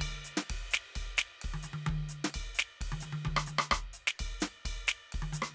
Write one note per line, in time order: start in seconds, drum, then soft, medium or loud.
0.01 kick soft
0.01 ride bell loud
0.24 hi-hat pedal medium
0.24 ride soft
0.38 snare medium
0.50 kick soft
0.50 ride loud
0.71 snare loud
0.71 hi-hat pedal medium
0.96 kick soft
0.96 ride bell medium
1.04 kick soft
1.18 snare loud
1.18 hi-hat pedal medium
1.42 kick soft
1.42 ride medium
1.54 high tom medium
1.63 hi-hat pedal medium
1.63 high tom medium
1.74 high tom medium
1.87 kick soft
1.87 high tom loud
2.09 hi-hat pedal medium
2.25 snare medium
2.35 kick soft
2.35 ride bell medium
2.55 hi-hat pedal medium
2.59 snare medium
2.81 kick soft
2.81 ride medium
2.87 kick soft
2.92 high tom medium
3.01 hi-hat pedal medium
3.01 high tom medium
3.13 high tom medium
3.25 kick soft
3.25 high tom loud
3.37 cross-stick medium
3.47 hi-hat pedal medium
3.47 high tom medium
3.59 cross-stick loud
3.72 kick soft
3.72 cross-stick loud
3.94 hi-hat pedal medium
4.08 snare medium
4.20 kick soft
4.20 ride bell medium
4.41 snare medium
4.41 hi-hat pedal medium
4.66 kick soft
4.66 ride bell medium
4.88 snare loud
4.88 hi-hat pedal medium
5.13 kick soft
5.13 ride medium
5.23 high tom medium
5.33 hi-hat pedal medium
5.33 high tom medium
5.43 cross-stick medium